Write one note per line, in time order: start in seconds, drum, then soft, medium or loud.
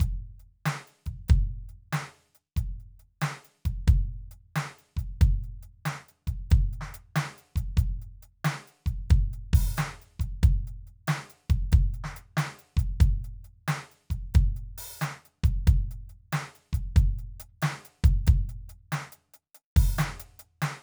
0.00 kick medium
0.00 closed hi-hat loud
0.26 closed hi-hat soft
0.40 closed hi-hat soft
0.66 snare loud
0.66 closed hi-hat loud
0.87 closed hi-hat soft
1.06 kick medium
1.06 closed hi-hat medium
1.28 kick loud
1.28 closed hi-hat medium
1.69 closed hi-hat soft
1.93 snare loud
1.93 closed hi-hat loud
2.35 closed hi-hat soft
2.56 kick medium
2.56 closed hi-hat loud
2.80 closed hi-hat soft
2.99 closed hi-hat soft
3.21 snare loud
3.21 closed hi-hat loud
3.45 closed hi-hat medium
3.65 kick medium
3.65 closed hi-hat medium
3.88 kick loud
3.88 closed hi-hat medium
4.13 closed hi-hat soft
4.31 closed hi-hat medium
4.56 snare loud
4.56 closed hi-hat loud
4.79 closed hi-hat soft
4.97 kick medium
4.97 closed hi-hat medium
5.21 kick loud
5.21 closed hi-hat loud
5.44 closed hi-hat soft
5.63 closed hi-hat medium
5.85 snare loud
5.85 closed hi-hat loud
6.08 closed hi-hat medium
6.27 kick medium
6.27 closed hi-hat medium
6.51 kick loud
6.51 closed hi-hat medium
6.73 closed hi-hat soft
6.81 snare medium
6.94 closed hi-hat loud
7.16 snare loud
7.16 closed hi-hat loud
7.38 closed hi-hat medium
7.56 kick medium
7.56 closed hi-hat loud
7.77 kick loud
7.77 closed hi-hat loud
8.02 closed hi-hat soft
8.23 closed hi-hat medium
8.45 snare loud
8.45 closed hi-hat loud
8.68 closed hi-hat medium
8.86 kick medium
8.86 closed hi-hat medium
9.10 kick loud
9.10 closed hi-hat medium
9.33 closed hi-hat medium
9.53 kick loud
9.53 open hi-hat loud
9.77 snare loud
9.77 hi-hat pedal loud
9.77 open hi-hat loud
10.02 closed hi-hat medium
10.20 kick medium
10.20 closed hi-hat medium
10.43 kick loud
10.43 closed hi-hat loud
10.67 closed hi-hat medium
10.87 closed hi-hat soft
11.07 snare loud
11.07 closed hi-hat loud
11.30 closed hi-hat medium
11.50 kick loud
11.50 closed hi-hat medium
11.72 kick loud
11.72 closed hi-hat loud
11.94 closed hi-hat medium
12.04 snare medium
12.16 closed hi-hat loud
12.37 snare loud
12.37 closed hi-hat loud
12.59 closed hi-hat medium
12.77 kick loud
12.77 closed hi-hat loud
13.00 kick loud
13.00 closed hi-hat loud
13.24 closed hi-hat medium
13.44 closed hi-hat soft
13.68 snare loud
13.68 closed hi-hat loud
13.91 closed hi-hat soft
14.10 kick medium
14.10 closed hi-hat medium
14.34 kick loud
14.34 closed hi-hat loud
14.56 closed hi-hat medium
14.78 open hi-hat loud
15.01 snare loud
15.01 hi-hat pedal loud
15.01 open hi-hat loud
15.25 closed hi-hat medium
15.44 kick loud
15.44 closed hi-hat medium
15.67 kick loud
15.67 closed hi-hat loud
15.91 closed hi-hat medium
16.09 closed hi-hat soft
16.32 snare loud
16.32 closed hi-hat loud
16.55 closed hi-hat medium
16.73 kick medium
16.73 closed hi-hat loud
16.96 kick loud
16.96 closed hi-hat loud
17.19 closed hi-hat soft
17.40 closed hi-hat loud
17.62 snare loud
17.62 closed hi-hat loud
17.85 closed hi-hat medium
18.04 kick loud
18.04 closed hi-hat loud
18.27 kick loud
18.27 closed hi-hat loud
18.49 closed hi-hat medium
18.69 closed hi-hat medium
18.92 snare loud
18.92 closed hi-hat loud
19.12 closed hi-hat medium
19.34 closed hi-hat medium
19.55 closed hi-hat medium
19.76 kick loud
19.76 open hi-hat loud
19.98 snare loud
19.98 hi-hat pedal loud
19.98 open hi-hat loud
20.20 closed hi-hat loud
20.39 closed hi-hat loud
20.62 snare loud
20.62 closed hi-hat loud